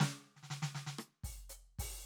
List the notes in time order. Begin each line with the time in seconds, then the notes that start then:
0.02 snare
0.37 snare
0.43 snare
0.51 snare
0.62 snare
0.75 snare
0.87 snare
0.99 cross-stick
1.24 open hi-hat, kick
1.50 hi-hat pedal
1.79 open hi-hat, kick